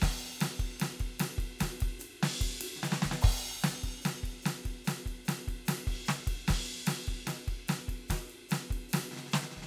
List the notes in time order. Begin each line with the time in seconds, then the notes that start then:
0.01 kick, snare, hi-hat pedal, crash
0.41 snare, hi-hat pedal, ride
0.47 snare
0.59 kick, ride
0.80 snare, hi-hat pedal, ride
1.00 kick, ride
1.19 snare, hi-hat pedal, ride
1.38 kick, ride
1.59 kick, snare, hi-hat pedal, ride
1.81 kick, ride
1.99 hi-hat pedal, ride
2.23 snare, ride
2.41 kick, hi-hat pedal, ride
2.61 ride
2.76 snare
2.83 snare, hi-hat pedal
2.92 snare
3.05 kick
3.11 snare
3.21 kick, hi-hat pedal, crash
3.47 kick
3.61 snare, hi-hat pedal, ride
3.84 kick, ride
4.02 snare, hi-hat pedal, ride
4.23 kick, ride
4.42 snare, hi-hat pedal
4.47 ride
4.65 kick, ride
4.84 snare, hi-hat pedal, ride
5.06 kick, ride
5.25 snare, hi-hat pedal
5.29 ride
5.48 kick, ride
5.66 snare, hi-hat pedal, ride
5.87 kick, ride
5.96 kick
6.06 snare, hi-hat pedal
6.27 kick, ride
6.47 kick, snare, hi-hat pedal, ride
6.66 ride
6.85 snare, hi-hat pedal, ride
7.07 kick, ride
7.27 snare, hi-hat pedal, ride
7.48 kick, ride
7.68 snare, hi-hat pedal, ride
7.88 kick, ride
8.09 kick, snare, hi-hat pedal, ride
8.30 ride
8.49 snare, hi-hat pedal, ride
8.71 kick, ride
8.89 hi-hat pedal
8.93 snare, ride
9.11 snare
9.17 snare
9.26 snare
9.30 snare, hi-hat pedal
9.34 snare
9.42 snare
9.51 snare
9.56 kick, snare
9.62 snare